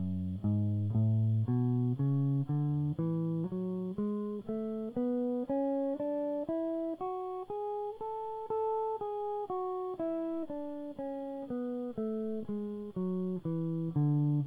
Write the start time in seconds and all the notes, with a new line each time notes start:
0.00 G2
0.46 G#2
0.97 A2
1.50 B2
2.02 C#3
2.51 D3
3.01 E3
3.49 F#3
3.99 G#3
4.48 A3
4.97 B3
5.50 C#4
6.01 D4
6.49 E4
7.01 F#4
7.51 G#4
8.03 A4
8.51 A4
9.02 G#4
9.50 F#4
10.00 E4
10.50 D4
11.00 C#4
11.48 B3
11.99 A3
12.52 G#3
12.99 F#3
13.47 E3
13.97 D3